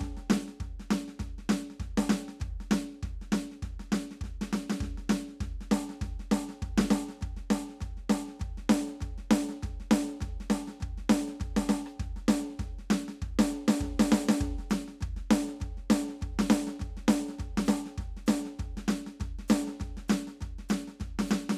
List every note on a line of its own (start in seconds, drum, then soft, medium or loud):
0.01 kick medium
0.01 snare soft
0.17 snare soft
0.30 snare loud
0.48 snare soft
0.60 kick medium
0.60 snare soft
0.80 snare soft
0.91 snare loud
1.08 snare soft
1.20 kick medium
1.20 snare soft
1.39 snare soft
1.50 snare loud
1.70 snare soft
1.80 kick medium
1.80 snare soft
1.98 snare loud
2.10 snare loud
2.29 snare soft
2.40 kick medium
2.40 snare soft
2.60 snare soft
2.71 snare loud
2.93 snare soft
3.03 kick medium
3.03 snare soft
3.22 snare soft
3.32 snare loud
3.52 snare soft
3.63 kick medium
3.63 snare soft
3.80 snare soft
3.92 snare loud
4.11 snare soft
4.21 kick medium
4.21 snare soft
4.42 snare medium
4.53 kick soft
4.53 snare loud
4.70 snare medium
4.81 kick medium
4.81 snare soft
4.98 snare soft
5.10 snare loud
5.29 snare soft
5.41 kick medium
5.41 snare soft
5.61 snare soft
5.72 snare loud
5.90 snare soft
6.02 kick medium
6.02 snare soft
6.20 snare soft
6.32 snare loud
6.49 snare soft
6.62 kick medium
6.62 snare soft
6.78 snare loud
6.91 snare loud
7.09 snare soft
7.21 kick medium
7.21 snare soft
7.37 snare soft
7.51 snare loud
7.69 snare soft
7.81 kick medium
7.81 snare soft
7.97 snare soft
8.10 snare loud
8.28 snare soft
8.40 kick medium
8.40 snare soft
8.58 snare soft
8.70 snare loud
8.88 snare soft
9.01 kick medium
9.01 snare soft
9.18 snare soft
9.31 snare loud
9.49 snare soft
9.63 kick medium
9.63 snare soft
9.80 snare soft
9.91 snare loud
10.07 snare soft
10.21 kick medium
10.21 snare soft
10.40 snare soft
10.50 snare loud
10.68 snare soft
10.80 kick medium
10.80 snare soft
10.98 snare soft
11.10 snare loud
11.28 snare soft
11.40 kick medium
11.40 snare soft
11.57 snare medium
11.69 snare loud
11.86 cross-stick medium
12.00 kick medium
12.00 snare soft
12.16 snare soft
12.29 snare loud
12.50 snare soft
12.60 kick medium
12.60 snare soft
12.79 snare soft
12.91 snare loud
13.08 snare soft
13.22 kick medium
13.22 snare soft
13.39 snare loud
13.53 snare soft
13.68 snare loud
13.81 kick medium
13.81 snare soft
14.00 snare loud
14.12 snare loud
14.29 snare loud
14.41 kick medium
14.41 snare soft
14.59 snare soft
14.64 kick soft
14.70 snare loud
14.70 hi-hat pedal medium
14.77 kick soft
14.88 snare soft
15.01 kick medium
15.01 snare soft
15.17 snare soft
15.31 snare loud
15.31 hi-hat pedal medium
15.48 snare soft
15.61 kick medium
15.61 snare soft
15.78 snare soft
15.90 snare loud
15.90 hi-hat pedal medium
16.09 snare soft
16.22 kick medium
16.22 snare soft
16.39 snare loud
16.50 snare loud
16.50 hi-hat pedal medium
16.67 snare medium
16.80 kick medium
16.80 snare soft
16.97 snare soft
17.08 snare loud
17.08 hi-hat pedal medium
17.29 snare soft
17.39 kick medium
17.39 snare soft
17.58 snare loud
17.66 snare loud
17.66 hi-hat pedal medium
17.86 snare soft
17.98 kick medium
17.98 snare soft
18.17 snare soft
18.27 kick soft
18.27 snare loud
18.27 hi-hat pedal medium
18.46 snare soft
18.59 kick medium
18.59 snare soft
18.77 snare medium
18.88 snare loud
18.88 hi-hat pedal medium
19.07 snare soft
19.20 kick medium
19.20 snare soft
19.39 snare soft
19.48 snare loud
19.48 hi-hat pedal medium
19.68 snare soft
19.80 kick medium
19.80 snare soft
19.97 snare soft
20.09 snare loud
20.09 hi-hat pedal medium
20.28 snare soft
20.41 kick medium
20.41 snare soft
20.59 snare soft
20.69 snare loud
20.69 hi-hat pedal medium
20.88 snare soft
21.00 kick medium
21.00 snare soft
21.19 snare loud
21.27 snare loud
21.27 hi-hat pedal medium
21.50 snare loud